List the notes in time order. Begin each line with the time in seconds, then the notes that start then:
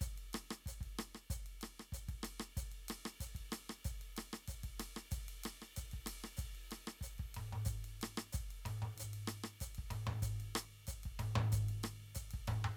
0.01 kick, hi-hat pedal, ride
0.18 ride
0.33 cross-stick, ride
0.51 cross-stick
0.66 kick, hi-hat pedal, ride
0.81 kick, ride
0.99 cross-stick, ride
1.15 cross-stick
1.30 kick, hi-hat pedal, ride
1.46 ride
1.61 cross-stick, ride
1.80 cross-stick
1.92 kick, hi-hat pedal, ride
2.09 kick, ride
2.23 cross-stick, ride
2.40 cross-stick
2.57 kick, hi-hat pedal, ride
2.72 ride
2.89 cross-stick, ride
3.05 cross-stick
3.20 kick, hi-hat pedal, ride
3.35 kick, ride
3.52 cross-stick, ride
3.70 cross-stick
3.85 kick, hi-hat pedal, ride
4.01 ride
4.17 cross-stick, ride
4.33 cross-stick
4.48 kick, hi-hat pedal, ride
4.64 kick, ride
4.80 cross-stick, ride
4.96 cross-stick
5.11 kick, hi-hat pedal, ride
5.28 ride
5.44 cross-stick, ride
5.62 cross-stick
5.76 kick, hi-hat pedal, ride
5.92 kick, ride
6.06 cross-stick, ride
6.24 cross-stick
6.37 kick, hi-hat pedal, ride
6.55 ride
6.71 cross-stick, ride
6.87 cross-stick
7.01 kick, hi-hat pedal, ride
7.18 kick, ride
7.35 high tom, ride
7.53 high tom
7.65 kick, hi-hat pedal, ride
7.84 ride
8.02 cross-stick, ride
8.18 cross-stick
8.33 kick, hi-hat pedal, ride
8.51 ride
8.65 high tom, ride
8.82 high tom
8.98 hi-hat pedal, ride
9.02 kick
9.13 ride
9.28 cross-stick, ride
9.44 cross-stick
9.61 kick, hi-hat pedal, ride
9.75 kick, ride
9.91 high tom, ride
10.07 high tom
10.22 kick, hi-hat pedal, ride
10.40 ride
10.55 cross-stick, ride
10.87 kick, hi-hat pedal, ride
11.04 kick, ride
11.19 high tom, ride
11.36 high tom
11.52 kick, hi-hat pedal, ride
11.69 ride
11.84 cross-stick, ride
12.15 kick, hi-hat pedal, ride
12.31 kick, ride
12.48 high tom, ride
12.64 high tom